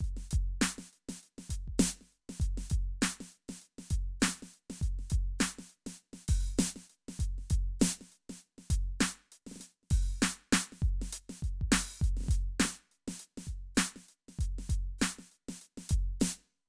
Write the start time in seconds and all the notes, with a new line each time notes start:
0.01 kick, closed hi-hat
0.17 snare
0.31 open hi-hat, kick
0.61 closed hi-hat, snare, hi-hat pedal
0.79 snare
0.93 closed hi-hat
1.09 closed hi-hat, snare
1.23 closed hi-hat
1.39 snare
1.50 closed hi-hat, kick
1.68 kick
1.79 closed hi-hat, snare, hi-hat pedal
2.01 snare
2.12 closed hi-hat
2.29 snare, closed hi-hat
2.40 closed hi-hat, kick
2.58 snare
2.70 open hi-hat, kick
3.02 closed hi-hat, snare, hi-hat pedal
3.21 snare
3.32 closed hi-hat
3.49 snare, closed hi-hat
3.62 closed hi-hat
3.79 snare
3.91 closed hi-hat, kick
4.20 closed hi-hat, snare, hi-hat pedal
4.28 snare
4.43 snare
4.54 closed hi-hat
4.70 snare
4.82 closed hi-hat, kick
4.99 snare
5.10 closed hi-hat, kick
5.39 closed hi-hat, snare, hi-hat pedal
5.59 snare
5.70 closed hi-hat
5.87 closed hi-hat, snare
6.00 closed hi-hat
6.13 snare
6.29 open hi-hat, kick
6.58 closed hi-hat, snare, hi-hat pedal
6.76 snare
6.90 closed hi-hat
7.09 snare
7.20 closed hi-hat, kick
7.38 snare
7.50 open hi-hat, kick
7.80 closed hi-hat, snare, hi-hat pedal
8.01 snare
8.12 closed hi-hat
8.30 snare, closed hi-hat
8.43 closed hi-hat
8.58 snare
8.71 closed hi-hat, kick
9.00 closed hi-hat, snare, hi-hat pedal
9.32 closed hi-hat
9.47 snare, closed hi-hat
9.52 snare
9.56 snare
9.60 closed hi-hat, snare
9.83 snare
9.91 open hi-hat, kick
10.22 closed hi-hat, snare, hi-hat pedal
10.53 closed hi-hat, snare
10.72 snare
10.82 kick, closed hi-hat
11.02 snare
11.13 closed hi-hat
11.30 snare
11.43 kick, closed hi-hat
11.62 kick
11.72 open hi-hat, snare
12.00 kick, hi-hat pedal
12.04 closed hi-hat
12.17 snare
12.21 snare
12.24 snare
12.27 kick, snare
12.31 closed hi-hat, snare
12.60 closed hi-hat, snare
12.65 snare
12.92 closed hi-hat
13.08 snare
13.20 closed hi-hat
13.38 snare
13.47 kick, closed hi-hat
13.75 closed hi-hat, snare, hi-hat pedal
13.96 snare
14.09 closed hi-hat
14.29 snare, closed hi-hat
14.39 closed hi-hat, kick
14.59 snare
14.70 open hi-hat, kick
14.99 closed hi-hat, snare, hi-hat pedal
15.19 snare
15.32 closed hi-hat
15.49 snare, closed hi-hat
15.62 closed hi-hat
15.78 snare
15.89 closed hi-hat, kick
16.20 closed hi-hat, snare, hi-hat pedal
16.36 closed hi-hat